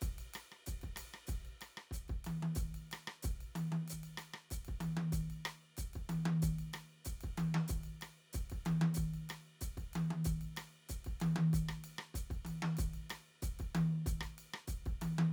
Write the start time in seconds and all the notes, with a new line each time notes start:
0.01 kick, hi-hat pedal, ride
0.18 ride
0.34 cross-stick, ride
0.52 cross-stick
0.66 kick, hi-hat pedal, ride
0.82 kick, ride
0.96 cross-stick, ride
1.14 cross-stick
1.27 kick, hi-hat pedal, ride
1.45 ride
1.61 cross-stick, ride
1.77 cross-stick
1.91 kick, hi-hat pedal, ride
2.08 kick, ride
2.24 high tom, ride
2.43 high tom
2.55 kick, hi-hat pedal, ride
2.74 ride
2.91 cross-stick, ride
3.07 cross-stick
3.23 kick, hi-hat pedal, ride
3.41 ride
3.55 high tom, ride
3.72 high tom
3.88 hi-hat pedal, ride
3.92 kick
4.03 ride
4.18 cross-stick, ride
4.34 cross-stick
4.51 kick, hi-hat pedal, ride
4.65 kick, ride
4.80 high tom, ride
4.97 high tom
5.12 kick, hi-hat pedal, ride
5.30 ride
5.45 cross-stick, ride
5.77 kick, hi-hat pedal, ride
5.93 kick, ride
6.09 high tom, ride
6.26 high tom
6.42 kick, hi-hat pedal, ride
6.59 ride
6.73 cross-stick, ride
7.05 kick, hi-hat pedal, ride
7.21 kick, ride
7.38 high tom, ride
7.54 high tom
7.68 kick, hi-hat pedal, ride
7.84 ride
8.01 cross-stick, ride
8.33 kick, hi-hat pedal, ride
8.50 kick, ride
8.65 high tom, ride
8.81 high tom
8.94 kick, hi-hat pedal, ride
9.14 ride
9.29 cross-stick, ride
9.61 kick, hi-hat pedal, ride
9.77 kick, ride
9.93 high tom, ride
10.11 high tom
10.24 kick, hi-hat pedal, ride
10.41 ride
10.57 cross-stick, ride
10.89 kick, hi-hat pedal, ride
11.05 kick, ride
11.20 high tom, ride
11.36 high tom
11.53 kick, hi-hat pedal, ride
11.69 cross-stick, ride
11.84 ride
11.98 cross-stick
12.14 kick, hi-hat pedal, ride
12.30 kick, ride
12.45 high tom, ride
12.62 high tom
12.77 kick, hi-hat pedal, ride
12.94 ride
13.10 cross-stick, ride
13.42 kick, hi-hat pedal, ride
13.59 kick, ride
13.75 high tom, ride
14.06 kick, hi-hat pedal, ride
14.21 cross-stick, ride
14.38 ride
14.54 cross-stick
14.68 kick, hi-hat pedal, ride
14.86 kick, ride
15.01 high tom, ride
15.18 high tom